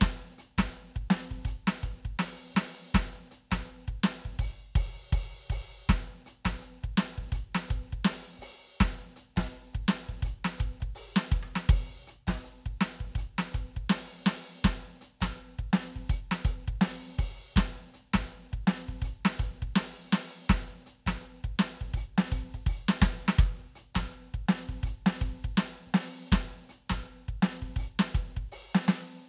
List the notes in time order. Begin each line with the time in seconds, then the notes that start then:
0.01 closed hi-hat, kick, snare, hi-hat pedal
0.26 closed hi-hat
0.32 hi-hat pedal
0.39 closed hi-hat
0.59 closed hi-hat, kick, snare
0.74 closed hi-hat
0.96 kick, closed hi-hat
1.11 closed hi-hat, snare
1.31 kick
1.46 closed hi-hat, kick
1.68 snare
1.83 closed hi-hat, kick
2.05 kick
2.20 open hi-hat, snare
2.55 open hi-hat, kick, snare
2.95 open hi-hat, kick, snare, hi-hat pedal
3.16 closed hi-hat
3.28 open hi-hat, hi-hat pedal
3.52 kick, snare, closed hi-hat
3.67 closed hi-hat
3.88 kick, closed hi-hat
4.04 closed hi-hat, snare
4.26 kick, closed hi-hat
4.39 open hi-hat, kick
4.76 open hi-hat, kick
5.13 open hi-hat, kick
5.50 open hi-hat, kick
5.89 closed hi-hat, kick, snare, hi-hat pedal
6.13 closed hi-hat
6.21 hi-hat pedal
6.27 closed hi-hat
6.45 kick, snare, closed hi-hat
6.62 closed hi-hat
6.84 kick, closed hi-hat
6.98 closed hi-hat, snare
7.18 kick
7.33 closed hi-hat, kick
7.55 snare
7.70 closed hi-hat, kick
7.93 kick
8.05 open hi-hat, snare
8.39 open hi-hat, kick
8.80 closed hi-hat, kick, snare, hi-hat pedal
9.03 closed hi-hat
9.12 hi-hat pedal
9.17 closed hi-hat
9.37 kick, snare, closed hi-hat
9.53 closed hi-hat
9.74 kick, closed hi-hat
9.89 closed hi-hat, snare
10.09 kick, closed hi-hat
10.23 closed hi-hat, kick
10.45 snare
10.60 closed hi-hat, kick
10.81 kick, closed hi-hat
10.96 open hi-hat
11.15 snare, hi-hat pedal
11.32 open hi-hat, kick
11.43 cross-stick, hi-hat pedal
11.56 snare
11.70 open hi-hat, kick
12.07 closed hi-hat, hi-hat pedal
12.28 kick, snare, closed hi-hat
12.45 closed hi-hat
12.66 kick, closed hi-hat
12.81 closed hi-hat, snare
13.01 kick
13.05 closed hi-hat
13.16 closed hi-hat, kick
13.39 snare
13.54 closed hi-hat, kick
13.76 kick, closed hi-hat
13.90 open hi-hat, snare
14.26 open hi-hat, kick, snare
14.65 open hi-hat, kick, snare, hi-hat pedal
14.87 closed hi-hat
14.97 hi-hat pedal
15.02 closed hi-hat
15.21 kick, snare, closed hi-hat
15.37 closed hi-hat
15.59 kick, closed hi-hat
15.74 closed hi-hat, snare
15.96 kick, closed hi-hat
16.08 open hi-hat, kick, hi-hat pedal
16.32 snare
16.45 open hi-hat, kick, hi-hat pedal
16.68 kick
16.76 kick
16.82 open hi-hat, snare
17.19 open hi-hat, kick
17.57 closed hi-hat, kick, snare, hi-hat pedal
17.80 closed hi-hat
17.89 hi-hat pedal
17.94 closed hi-hat
18.14 kick, snare, closed hi-hat
18.31 closed hi-hat
18.53 kick, closed hi-hat
18.68 closed hi-hat, snare
18.89 kick, closed hi-hat
19.02 closed hi-hat, kick
19.26 snare
19.40 closed hi-hat, kick
19.61 kick, closed hi-hat
19.76 open hi-hat, snare
20.13 open hi-hat, snare
20.49 closed hi-hat, kick, snare, hi-hat pedal
20.73 closed hi-hat
20.82 hi-hat pedal
20.87 closed hi-hat
21.07 kick, snare, closed hi-hat
21.23 closed hi-hat
21.45 kick, closed hi-hat
21.60 closed hi-hat, snare
21.82 kick, closed hi-hat
21.94 open hi-hat, kick
22.18 snare
22.32 open hi-hat, kick
22.55 kick, closed hi-hat
22.67 open hi-hat, kick, hi-hat pedal
22.89 snare
23.02 kick, snare
23.29 snare
23.39 open hi-hat, kick, cross-stick, hi-hat pedal
23.76 closed hi-hat
23.95 kick, snare, closed hi-hat
24.02 snare
24.12 closed hi-hat
24.34 kick, closed hi-hat
24.49 closed hi-hat, snare
24.69 kick, closed hi-hat
24.84 closed hi-hat, kick
25.07 snare
25.21 closed hi-hat, kick
25.44 kick, closed hi-hat
25.58 open hi-hat, snare, hi-hat pedal
25.87 kick
25.95 open hi-hat, snare
26.29 closed hi-hat, kick, snare, hi-hat pedal
26.54 closed hi-hat
26.66 closed hi-hat, hi-hat pedal
26.90 kick, snare, closed hi-hat
27.06 closed hi-hat
27.29 kick, closed hi-hat
27.43 closed hi-hat, snare
27.62 kick
27.67 closed hi-hat
27.77 open hi-hat, kick
27.82 hi-hat pedal
28.00 snare
28.08 snare
28.15 closed hi-hat, kick
28.37 kick, closed hi-hat
28.52 open hi-hat
28.75 snare
28.89 snare
29.24 hi-hat pedal